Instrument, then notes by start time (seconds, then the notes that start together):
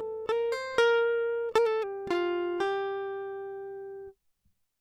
acoustic guitar
0.00 A4
0.30 A#4
0.53 C5
0.79 A#4
1.56 A#4
1.67 A4
1.83 G4
2.12 F4
2.61 G4